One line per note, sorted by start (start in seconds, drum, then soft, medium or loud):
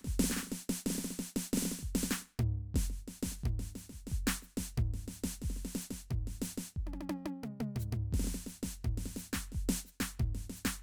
0.01 snare soft
0.04 kick soft
0.04 snare soft
0.20 snare loud
0.24 snare medium
0.30 snare soft
0.30 snare medium
0.37 snare medium
0.40 snare soft
0.43 snare soft
0.47 snare soft
0.52 snare medium
0.62 snare soft
0.69 snare medium
0.86 snare medium
0.90 snare medium
0.95 snare soft
0.98 snare medium
1.04 snare medium
1.11 snare soft
1.19 snare medium
1.36 snare medium
1.53 snare medium
1.57 snare medium
1.62 snare medium
1.65 snare medium
1.72 snare medium
1.79 snare soft
1.83 kick soft
1.95 snare medium
2.03 snare medium
2.11 snare medium
2.18 snare soft
2.22 snare soft
2.39 floor tom loud
2.75 kick medium
2.75 snare medium
2.90 snare soft
3.07 snare soft
3.07 hi-hat pedal soft
3.23 kick soft
3.23 snare medium
3.32 snare soft
3.44 kick soft
3.44 floor tom medium
3.59 snare soft
3.75 snare soft
3.75 hi-hat pedal soft
3.89 kick soft
3.89 snare soft
4.07 snare soft
4.12 kick soft
4.27 snare medium
4.42 snare soft
4.42 hi-hat pedal soft
4.57 kick soft
4.57 snare medium
4.78 kick soft
4.78 floor tom medium
4.94 snare soft
5.08 snare soft
5.08 hi-hat pedal soft
5.24 kick soft
5.24 snare medium
5.42 kick soft
5.42 snare soft
5.50 snare soft
5.56 snare soft
5.65 snare soft
5.75 snare medium
5.80 hi-hat pedal medium
5.91 kick soft
5.91 snare soft
6.11 kick soft
6.11 floor tom medium
6.27 snare soft
6.42 snare medium
6.42 hi-hat pedal medium
6.58 snare medium
6.76 kick soft
6.76 high tom soft
6.87 high tom medium
6.94 high tom medium
7.01 high tom medium
7.10 high tom loud
7.26 high tom medium
7.43 hi-hat pedal soft
7.43 mid tom medium
7.60 mid tom loud
7.76 floor tom medium
7.76 hi-hat pedal medium
7.93 floor tom loud
8.13 kick medium
8.13 snare soft
8.20 snare medium
8.24 snare soft
8.27 snare soft
8.46 snare soft
8.46 hi-hat pedal medium
8.63 kick soft
8.63 snare medium
8.85 kick soft
8.85 floor tom medium
8.98 snare soft
9.06 snare soft
9.16 snare soft
9.16 hi-hat pedal medium
9.33 kick soft
9.33 snare medium
9.52 kick soft
9.52 snare soft
9.69 snare medium
9.85 snare soft
9.85 hi-hat pedal medium
10.00 kick soft
10.00 snare medium
10.20 kick soft
10.20 floor tom medium
10.35 snare soft
10.50 snare soft
10.55 hi-hat pedal medium
10.65 kick soft
10.65 snare medium